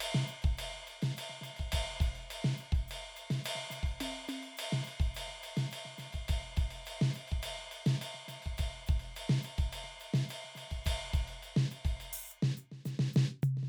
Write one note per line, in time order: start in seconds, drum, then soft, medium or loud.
0.01 hi-hat pedal medium
0.01 ride loud
0.15 snare medium
0.28 hi-hat pedal medium
0.28 ride soft
0.42 kick medium
0.42 ride soft
0.58 hi-hat pedal medium
0.58 ride loud
0.74 snare soft
0.87 hi-hat pedal medium
0.87 ride medium
1.02 snare medium
1.02 ride medium
1.17 hi-hat pedal medium
1.17 ride medium
1.30 snare soft
1.42 snare soft
1.42 hi-hat pedal medium
1.42 ride medium
1.57 kick soft
1.57 ride soft
1.72 kick soft
1.72 hi-hat pedal medium
1.72 ride loud
1.87 snare soft
2.01 kick medium
2.01 hi-hat pedal medium
2.01 ride medium
2.15 ride soft
2.31 hi-hat pedal medium
2.31 ride medium
2.45 snare medium
2.58 hi-hat pedal medium
2.58 ride soft
2.73 kick medium
2.73 ride soft
2.88 hi-hat pedal medium
2.88 ride medium
3.16 hi-hat pedal medium
3.16 ride medium
3.31 snare medium
3.31 ride medium
3.45 hi-hat pedal medium
3.45 ride loud
3.56 snare soft
3.71 snare soft
3.71 hi-hat pedal medium
3.71 ride medium
3.83 kick soft
3.83 ride soft
4.01 closed hi-hat soft
4.01 hi-hat pedal medium
4.01 high tom medium
4.01 ride loud
4.28 closed hi-hat soft
4.28 hi-hat pedal medium
4.28 high tom medium
4.28 ride medium
4.43 ride soft
4.57 hi-hat pedal loud
4.57 ride loud
4.73 snare medium
4.84 hi-hat pedal medium
4.84 ride medium
5.00 kick medium
5.00 ride soft
5.15 hi-hat pedal medium
5.15 ride loud
5.28 snare soft
5.43 hi-hat pedal medium
5.43 ride medium
5.57 snare medium
5.57 ride medium
5.71 hi-hat pedal medium
5.71 ride medium
5.86 snare soft
5.98 snare soft
5.98 hi-hat pedal medium
5.98 ride medium
6.13 kick soft
6.13 ride soft
6.28 kick medium
6.28 hi-hat pedal medium
6.28 ride medium
6.42 snare soft
6.57 kick medium
6.57 hi-hat pedal soft
6.57 ride medium
6.71 ride medium
6.86 hi-hat pedal medium
6.86 ride medium
7.02 snare loud
7.14 hi-hat pedal medium
7.14 ride medium
7.28 ride soft
7.32 kick soft
7.43 hi-hat pedal medium
7.43 ride loud
7.59 snare soft
7.72 hi-hat pedal medium
7.72 ride medium
7.86 snare loud
7.86 ride medium
8.02 hi-hat pedal medium
8.02 ride medium
8.15 snare soft
8.28 snare soft
8.28 hi-hat pedal medium
8.28 ride medium
8.43 kick soft
8.43 ride soft
8.58 kick soft
8.58 hi-hat pedal medium
8.58 ride medium
8.87 kick medium
8.87 hi-hat pedal medium
8.87 ride soft
9.00 ride soft
9.16 hi-hat pedal medium
9.16 ride medium
9.30 snare loud
9.43 hi-hat pedal medium
9.43 ride medium
9.58 kick medium
9.58 ride medium
9.73 hi-hat pedal medium
9.73 ride medium
9.84 snare soft
10.00 hi-hat pedal medium
10.00 ride medium
10.14 snare medium
10.14 ride medium
10.29 hi-hat pedal medium
10.29 ride medium
10.45 snare soft
10.56 snare soft
10.56 hi-hat pedal medium
10.56 ride medium
10.71 kick soft
10.71 ride soft
10.85 kick soft
10.85 hi-hat pedal medium
10.85 ride loud
10.99 snare soft
11.14 kick medium
11.14 hi-hat pedal medium
11.14 ride medium
11.28 ride medium
11.43 hi-hat pedal medium
11.43 ride medium
11.57 snare loud
11.71 hi-hat pedal medium
11.71 ride medium
11.85 kick medium
11.85 ride medium
12.00 hi-hat pedal medium
12.00 ride medium
12.13 open hi-hat loud
12.30 hi-hat pedal loud
12.43 snare medium
12.57 hi-hat pedal medium
12.72 snare soft
12.85 snare medium
12.85 hi-hat pedal medium
13.00 snare medium
13.13 snare loud
13.13 hi-hat pedal medium
13.43 floor tom loud
13.43 hi-hat pedal medium
13.57 snare soft
13.63 snare soft